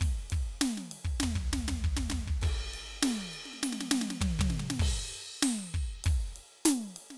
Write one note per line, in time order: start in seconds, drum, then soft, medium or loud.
0.01 kick medium
0.01 ride loud
0.30 kick medium
0.30 ride medium
0.61 snare loud
0.61 hi-hat pedal soft
0.61 ride loud
0.78 snare soft
0.88 hi-hat pedal soft
0.88 ride loud
1.05 kick medium
1.20 snare loud
1.20 floor tom loud
1.35 kick medium
1.53 snare medium
1.53 floor tom medium
1.68 snare medium
1.68 floor tom loud
1.84 kick medium
1.97 snare medium
1.97 floor tom medium
2.10 snare medium
2.10 floor tom medium
2.28 kick soft
2.42 kick medium
2.42 ride medium
2.74 ride medium
3.02 snare loud
3.02 hi-hat pedal soft
3.02 ride medium
3.31 hi-hat pedal soft
3.31 ride medium
3.46 snare soft
3.53 snare soft
3.60 snare soft
3.63 snare medium
3.63 hi-hat pedal loud
3.73 snare medium
3.81 snare medium
3.91 snare loud
4.01 snare medium
4.10 snare medium
4.21 kick medium
4.21 high tom loud
4.39 kick medium
4.39 high tom loud
4.50 snare soft
4.59 high tom medium
4.70 snare medium
4.79 kick medium
4.79 crash medium
5.43 open hi-hat loud
5.43 snare loud
5.74 kick medium
6.04 kick medium
6.04 ride loud
6.36 ride medium
6.65 snare loud
6.65 ride loud
6.96 ride loud
7.10 snare soft